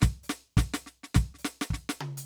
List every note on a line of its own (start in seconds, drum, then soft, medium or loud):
0.01 kick loud
0.01 snare soft
0.01 snare loud
0.23 hi-hat pedal medium
0.30 snare loud
0.57 kick loud
0.57 snare loud
0.74 snare loud
0.74 hi-hat pedal medium
0.86 snare medium
1.04 snare medium
1.15 kick loud
1.15 snare loud
1.34 snare soft
1.39 hi-hat pedal medium
1.45 snare loud
1.61 snare loud
1.70 kick medium
1.70 snare medium
1.89 snare loud
1.89 hi-hat pedal medium
2.01 high tom medium
2.17 closed hi-hat medium